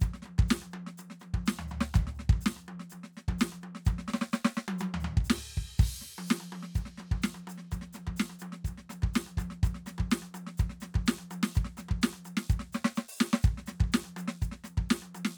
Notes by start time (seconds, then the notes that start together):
0.01 kick, hi-hat pedal, high tom
0.14 snare
0.23 snare, high tom
0.39 kick, high tom
0.49 snare, hi-hat pedal
0.62 high tom
0.71 hi-hat pedal, high tom
0.87 snare
0.98 hi-hat pedal, high tom
1.11 snare
1.20 snare, hi-hat pedal, high tom
1.34 kick, high tom
1.46 snare, hi-hat pedal
1.59 floor tom
1.67 kick, hi-hat pedal
1.72 floor tom
1.81 snare
1.94 kick, floor tom, hi-hat pedal
2.08 snare
2.15 hi-hat pedal
2.20 snare
2.30 kick, high tom
2.41 hi-hat pedal
2.46 snare
2.57 high tom
2.64 hi-hat pedal
2.69 high tom
2.80 snare
2.90 kick, hi-hat pedal, high tom
3.04 snare
3.13 hi-hat pedal
3.18 snare
3.29 kick, high tom
3.39 snare, hi-hat pedal
3.53 high tom
3.61 hi-hat pedal, high tom
3.75 snare
3.86 kick, hi-hat pedal, high tom
3.99 snare
4.08 kick, snare, hi-hat pedal
4.14 snare
4.22 snare
4.33 snare, hi-hat pedal
4.45 snare
4.54 snare, hi-hat pedal
4.69 high tom
4.79 hi-hat pedal, high tom
4.95 floor tom
5.01 hi-hat pedal
5.05 floor tom
5.18 kick
5.25 hi-hat pedal
5.30 snare, crash
5.58 kick
5.79 kick, hi-hat pedal, crash
6.02 snare
6.19 high tom
6.27 snare, hi-hat pedal
6.41 high tom
6.53 high tom
6.63 snare
6.75 kick, hi-hat pedal, high tom
6.86 snare
6.98 snare, high tom
7.12 kick, high tom
7.23 snare, hi-hat pedal
7.35 high tom
7.48 hi-hat pedal, high tom
7.58 snare
7.63 snare
7.72 kick, hi-hat pedal, high tom
7.82 snare
7.93 snare, hi-hat pedal, high tom
8.07 kick, high tom
8.17 snare, hi-hat pedal
8.30 high tom
8.40 hi-hat pedal, high tom
8.53 snare
8.65 kick, hi-hat pedal, high tom
8.78 snare
8.90 snare, hi-hat pedal, high tom
9.03 kick, high tom
9.14 snare, hi-hat pedal
9.27 high tom
9.38 kick, hi-hat pedal, high tom
9.51 snare
9.64 kick, hi-hat pedal, high tom
9.75 snare
9.87 snare, hi-hat pedal, high tom
9.99 kick, high tom
10.11 snare, hi-hat pedal
10.23 high tom
10.35 hi-hat pedal, high tom
10.47 snare
10.58 kick, hi-hat pedal, high tom
10.70 snare
10.81 snare, hi-hat pedal, high tom
10.95 kick, high tom
11.07 snare, hi-hat pedal
11.19 high tom
11.31 hi-hat pedal, high tom
11.43 snare
11.55 kick, hi-hat pedal, high tom
11.65 snare
11.78 snare, hi-hat pedal, high tom
11.89 kick, high tom
12.02 snare, hi-hat pedal
12.13 high tom
12.25 hi-hat pedal, high tom
12.38 snare
12.50 kick, hi-hat pedal, high tom
12.60 snare
12.73 snare, hi-hat pedal
12.85 snare
12.96 snare, hi-hat pedal
13.09 open hi-hat
13.19 snare, hi-hat pedal
13.34 snare
13.43 kick, hi-hat pedal
13.47 high tom
13.58 snare
13.67 snare, hi-hat pedal, high tom
13.80 kick, high tom
13.93 snare, hi-hat pedal
14.05 high tom
14.17 hi-hat pedal, high tom
14.28 snare
14.42 kick, hi-hat pedal, high tom
14.52 snare
14.64 snare, hi-hat pedal, high tom
14.78 kick, high tom
14.90 snare, hi-hat pedal
15.03 high tom
15.15 hi-hat pedal, high tom
15.25 snare